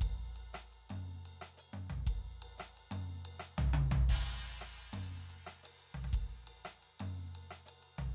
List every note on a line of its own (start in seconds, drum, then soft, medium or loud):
0.01 kick medium
0.01 ride loud
0.36 ride medium
0.53 cross-stick medium
0.53 hi-hat pedal medium
0.72 ride medium
0.90 mid tom medium
0.90 ride medium
1.26 ride medium
1.41 cross-stick medium
1.57 hi-hat pedal medium
1.57 ride bell medium
1.73 mid tom medium
1.90 floor tom medium
2.07 kick medium
2.07 ride loud
2.42 ride loud
2.58 cross-stick medium
2.58 hi-hat pedal medium
2.77 ride medium
2.91 mid tom medium
2.91 ride loud
3.25 ride loud
3.40 cross-stick medium
3.58 floor tom loud
3.58 hi-hat pedal medium
3.74 high tom loud
3.91 floor tom loud
4.09 kick medium
4.09 ride medium
4.44 ride medium
4.61 cross-stick soft
4.61 hi-hat pedal medium
4.78 ride soft
4.93 mid tom medium
4.93 ride loud
5.30 ride medium
5.47 cross-stick medium
5.63 hi-hat pedal medium
5.63 ride loud
5.80 ride medium
5.94 floor tom medium
6.04 floor tom medium
6.13 kick medium
6.13 ride loud
6.47 ride loud
6.65 cross-stick medium
6.65 hi-hat pedal medium
6.83 ride medium
7.00 mid tom medium
7.00 ride loud
7.35 ride medium
7.51 cross-stick medium
7.66 hi-hat pedal medium
7.66 ride loud
7.83 ride medium
7.98 floor tom medium